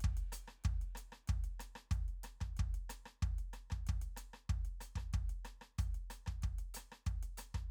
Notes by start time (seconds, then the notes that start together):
0.01 kick, closed hi-hat
0.17 closed hi-hat
0.33 closed hi-hat, cross-stick
0.48 cross-stick
0.64 kick, closed hi-hat
0.82 closed hi-hat
0.96 cross-stick, closed hi-hat
1.13 cross-stick
1.28 kick, closed hi-hat
1.44 closed hi-hat
1.60 cross-stick, closed hi-hat
1.76 cross-stick
1.92 kick, closed hi-hat
2.09 closed hi-hat
2.24 cross-stick, closed hi-hat
2.41 kick, cross-stick
2.57 kick, closed hi-hat
2.75 closed hi-hat
2.90 cross-stick, closed hi-hat
3.06 cross-stick
3.23 kick, closed hi-hat
3.39 closed hi-hat
3.54 cross-stick, closed hi-hat
3.71 kick, cross-stick
3.87 kick, closed hi-hat
4.02 closed hi-hat
4.17 cross-stick, closed hi-hat
4.34 cross-stick
4.50 kick, closed hi-hat
4.65 closed hi-hat
4.81 closed hi-hat, cross-stick
4.96 kick, cross-stick
5.14 kick, closed hi-hat
5.30 closed hi-hat
5.45 cross-stick, closed hi-hat
5.62 cross-stick
5.79 closed hi-hat, kick
5.95 closed hi-hat
6.11 closed hi-hat, cross-stick
6.27 kick, cross-stick
6.43 kick, closed hi-hat
6.59 closed hi-hat
6.75 closed hi-hat, cross-stick
6.92 cross-stick
7.07 kick, closed hi-hat
7.23 closed hi-hat
7.38 closed hi-hat, cross-stick
7.55 kick, cross-stick